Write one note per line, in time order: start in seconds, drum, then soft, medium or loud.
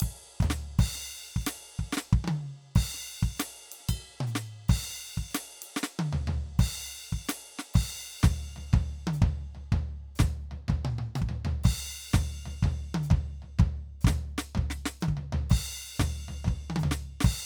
0.01 kick medium
0.01 ride loud
0.41 kick loud
0.41 floor tom loud
0.41 hi-hat pedal medium
0.51 snare loud
0.80 kick loud
0.80 crash loud
0.96 snare soft
0.99 snare soft
1.07 snare soft
1.37 kick medium
1.41 hi-hat pedal medium
1.47 snare loud
1.47 ride loud
1.80 kick medium
1.93 snare loud
1.98 snare loud
2.14 kick loud
2.25 high tom medium
2.29 high tom loud
2.76 kick loud
2.76 crash loud
2.95 snare soft
3.23 kick loud
3.37 snare loud
3.37 hi-hat pedal medium
3.37 ride loud
3.73 ride medium
3.81 snare soft
3.85 snare soft
3.90 kick medium
3.90 ride bell loud
4.21 mid tom loud
4.28 hi-hat pedal medium
4.36 snare loud
4.69 kick loud
4.69 crash loud
4.83 snare soft
4.91 snare soft
5.18 kick medium
5.31 hi-hat pedal medium
5.35 snare loud
5.35 ride loud
5.63 ride medium
5.77 snare loud
5.84 snare loud
6.00 high tom loud
6.14 floor tom loud
6.28 floor tom loud
6.60 kick loud
6.60 crash loud
7.13 kick medium
7.26 hi-hat pedal soft
7.30 snare loud
7.30 ride loud
7.60 snare loud
7.75 kick loud
7.75 crash loud
8.20 snare loud
8.20 floor tom loud
8.20 hi-hat pedal medium
8.25 kick loud
8.57 floor tom medium
8.70 kick loud
8.70 floor tom loud
8.70 high tom soft
9.08 high tom loud
9.14 hi-hat pedal medium
9.23 kick loud
9.23 floor tom loud
9.56 floor tom medium
9.73 kick medium
9.73 floor tom loud
10.16 snare loud
10.16 hi-hat pedal medium
10.21 kick loud
10.21 floor tom loud
10.52 floor tom medium
10.69 kick medium
10.69 floor tom loud
10.86 mid tom loud
10.99 mid tom medium
11.16 hi-hat pedal medium
11.16 mid tom loud
11.22 kick medium
11.30 floor tom medium
11.46 floor tom loud
11.65 kick loud
11.65 crash loud
12.11 kick loud
12.11 snare loud
12.11 floor tom loud
12.11 hi-hat pedal medium
12.46 floor tom medium
12.63 kick loud
12.63 floor tom loud
12.95 high tom loud
13.04 hi-hat pedal medium
13.11 kick loud
13.11 floor tom loud
13.43 floor tom soft
13.60 kick loud
13.60 floor tom loud
14.02 kick loud
14.02 hi-hat pedal medium
14.08 snare loud
14.08 floor tom loud
14.39 snare loud
14.56 kick medium
14.56 floor tom loud
14.71 snare medium
14.86 snare loud
15.01 hi-hat pedal medium
15.01 high tom loud
15.09 kick medium
15.18 floor tom medium
15.33 floor tom loud
15.51 kick loud
15.51 crash loud
15.96 hi-hat pedal medium
16.00 kick medium
16.00 snare loud
16.00 floor tom loud
16.29 floor tom medium
16.45 kick medium
16.45 floor tom loud
16.71 high tom loud
16.77 hi-hat pedal medium
16.77 high tom loud
16.82 kick soft
16.82 floor tom loud
16.92 snare loud
17.21 kick loud
17.21 snare loud
17.21 hi-hat pedal medium
17.21 crash loud